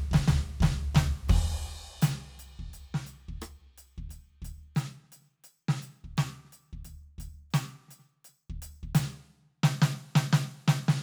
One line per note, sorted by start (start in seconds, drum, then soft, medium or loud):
0.12 kick medium
0.12 snare loud
0.12 floor tom loud
0.28 kick medium
0.28 snare loud
0.28 floor tom loud
0.61 kick medium
0.61 snare loud
0.61 floor tom loud
0.95 kick medium
0.95 snare loud
0.95 floor tom loud
1.28 kick loud
1.28 snare soft
1.28 crash loud
2.03 snare loud
2.03 percussion loud
2.06 percussion soft
2.38 cross-stick soft
2.38 percussion medium
2.60 kick soft
2.71 kick soft
2.71 percussion medium
2.95 snare medium
3.07 percussion medium
3.29 kick soft
3.42 cross-stick medium
3.42 percussion medium
3.78 percussion medium
3.99 kick soft
4.10 kick soft
4.10 percussion medium
4.43 kick soft
4.43 percussion medium
4.76 snare loud
4.76 percussion soft
4.78 percussion medium
5.04 snare soft
5.13 percussion medium
5.17 snare soft
5.23 snare soft
5.45 percussion medium
5.69 snare loud
5.83 percussion medium
6.05 kick soft
6.18 snare loud
6.18 percussion medium
6.46 snare soft
6.53 percussion medium
6.74 kick soft
6.85 kick soft
6.85 percussion medium
7.19 kick soft
7.19 percussion medium
7.51 snare loud
7.51 percussion soft
7.55 percussion medium
7.89 snare soft
7.89 percussion medium
8.00 snare soft
8.25 percussion medium
8.29 snare soft
8.50 kick soft
8.63 percussion medium
8.84 kick soft
8.96 snare loud
8.96 percussion loud
9.64 snare loud
9.83 snare loud
10.16 snare loud
10.34 snare loud
10.69 snare loud
10.89 snare loud